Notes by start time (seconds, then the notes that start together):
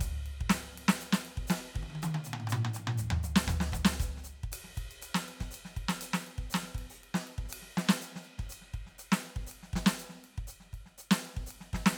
0.01 kick, hi-hat pedal, ride
0.07 kick
0.22 hi-hat pedal
0.26 ride
0.41 kick
0.50 snare, hi-hat pedal, ride
0.55 snare
0.72 hi-hat pedal
0.78 ride
0.89 snare
1.00 hi-hat pedal, ride
1.13 snare
1.26 ride
1.38 kick
1.46 kick, hi-hat pedal
1.50 snare, ride
1.75 kick, high tom
1.82 kick, high tom
1.91 high tom
1.96 high tom
2.03 hi-hat pedal, high tom
2.15 high tom
2.25 hi-hat pedal, mid tom
2.34 mid tom
2.40 mid tom
2.48 hi-hat pedal, mid tom
2.53 mid tom
2.65 mid tom
2.74 hi-hat pedal, mid tom
2.88 mid tom
2.98 floor tom, hi-hat pedal
3.11 floor tom
3.24 floor tom, hi-hat pedal
3.36 snare
3.48 kick, hi-hat pedal, floor tom
3.61 snare
3.73 kick, hi-hat pedal, floor tom
3.85 snare
3.93 snare
4.00 kick, hi-hat pedal, ride bell
4.13 kick
4.17 snare
4.24 snare, hi-hat pedal, ride
4.44 kick
4.52 hi-hat pedal, ride
4.64 snare
4.69 snare
4.73 snare, hi-hat pedal
4.78 kick, ride
4.91 ride bell
5.02 hi-hat pedal, ride
5.15 snare
5.24 hi-hat pedal
5.29 ride
5.41 kick, snare
5.51 hi-hat pedal, ride bell
5.65 snare
5.73 hi-hat pedal
5.77 kick, ride
5.89 snare
6.01 hi-hat pedal, ride bell
6.14 snare
6.22 hi-hat pedal
6.27 ride
6.38 kick
6.51 hi-hat pedal, ride
6.55 snare
6.63 snare
6.72 kick, hi-hat pedal
6.79 ride
6.90 open hi-hat
7.04 ride
7.15 snare
7.28 ride
7.38 kick
7.46 snare, hi-hat pedal
7.53 ride
7.62 snare
7.71 hi-hat pedal
7.78 snare
7.89 snare
8.02 hi-hat pedal
8.16 snare
8.23 hi-hat pedal, ride
8.39 kick, snare
8.43 snare
8.50 hi-hat pedal, ride bell
8.62 snare
8.67 snare
8.74 kick, ride
8.87 snare
8.99 hi-hat pedal, ride
9.12 snare
9.18 cross-stick
9.24 ride
9.36 kick, snare
9.47 hi-hat pedal
9.52 ride
9.63 snare
9.74 kick, snare
9.87 snare
9.99 hi-hat pedal, ride bell
10.10 snare
10.18 snare
10.25 ride
10.35 kick, snare
10.40 snare
10.48 hi-hat pedal, ride bell
10.61 snare
10.66 snare
10.73 kick, ride
10.86 snare
10.98 hi-hat pedal, ride
11.11 snare
11.16 cross-stick
11.21 hi-hat pedal
11.26 ride
11.36 kick, snare
11.47 hi-hat pedal
11.51 ride
11.61 snare
11.74 kick, snare
11.86 snare
11.93 snare